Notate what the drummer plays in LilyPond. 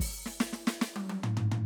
\new DrumStaff \drummode { \time 4/4 \tempo 4 = 144 \tuplet 3/2 { <bd hho>8 r8 sn8 sn8 sn8 sn8 sn8 tommh8 tommh8 tomfh8 tomfh8 tomfh8 } | }